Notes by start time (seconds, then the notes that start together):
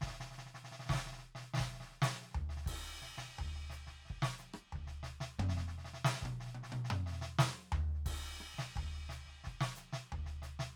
0.01 kick, snare
0.07 snare
0.12 snare
0.20 snare
0.26 snare
0.31 snare
0.38 snare
0.46 snare
0.54 snare
0.62 snare
0.64 snare
0.71 snare
0.79 snare
0.86 kick, snare
0.93 snare
0.98 snare
1.04 snare
1.06 snare
1.12 snare
1.18 snare
1.35 snare
1.40 snare
1.54 snare
1.57 kick, snare
1.60 snare
1.63 snare
1.66 snare
1.71 snare
1.73 snare
1.80 snare
1.85 snare
1.90 snare
1.98 snare
2.02 snare
2.06 snare
2.15 snare
2.21 snare
2.25 snare
2.31 snare, floor tom
2.35 kick
2.49 snare
2.56 snare
2.62 kick, snare
2.68 snare, crash
2.74 snare
3.02 snare, hi-hat pedal
3.18 kick, snare
3.28 snare
3.38 kick, floor tom
3.55 snare
3.70 snare, hi-hat pedal
3.87 kick, snare
4.05 snare
4.10 kick
4.22 snare
4.38 snare, hi-hat pedal
4.54 kick, cross-stick
4.72 kick, floor tom
4.87 snare
5.03 snare, hi-hat pedal
5.20 snare
5.39 kick, mid tom
5.47 kick, snare
5.57 snare
5.68 snare
5.78 snare
5.84 snare
5.94 snare
6.04 snare
6.21 kick, snare, high tom
6.40 snare
6.46 snare
6.54 high tom
6.63 snare
6.69 snare, high tom
6.73 kick
6.84 snare
6.90 snare, mid tom
7.06 snare
7.12 snare
7.16 snare
7.21 snare
7.39 snare
7.61 snare
7.72 kick, floor tom
7.94 snare
8.06 kick, crash
8.40 cross-stick
8.54 kick
8.58 snare
8.76 kick, floor tom
8.94 snare
9.09 snare, hi-hat pedal
9.25 kick, snare
9.44 kick, snare
9.61 snare
9.75 snare, hi-hat pedal
9.93 kick, snare
10.12 kick, floor tom
10.26 snare
10.42 snare, hi-hat pedal
10.59 snare